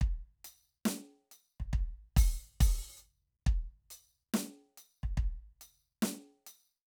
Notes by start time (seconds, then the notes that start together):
0.01 kick, crash, ride
0.44 closed hi-hat
0.85 snare
1.31 closed hi-hat
1.60 kick
1.73 kick, crash, ride
2.17 kick, percussion
2.61 kick, percussion
2.97 hi-hat pedal
3.46 kick
3.90 closed hi-hat
4.34 snare
4.78 closed hi-hat
5.03 kick
5.17 kick, snare, crash
5.61 closed hi-hat
6.02 snare
6.47 closed hi-hat